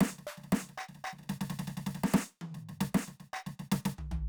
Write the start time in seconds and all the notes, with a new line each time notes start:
0.01 snare
0.12 snare
0.19 snare
0.27 percussion
0.38 snare
0.44 snare
0.53 snare
0.63 snare
0.69 snare
0.78 percussion
0.89 snare
0.95 snare
1.05 percussion
1.13 snare
1.19 snare
1.24 snare
1.30 snare
1.41 snare
1.50 snare
1.59 snare
1.68 snare
1.77 snare
1.87 snare
1.95 snare
2.04 snare
2.14 snare
2.42 closed hi-hat, high tom
2.55 snare
2.69 snare
2.81 snare
2.95 snare
3.08 snare
3.20 snare
3.34 percussion
3.47 snare
3.60 snare
3.72 snare
3.86 snare
3.99 floor tom
4.12 floor tom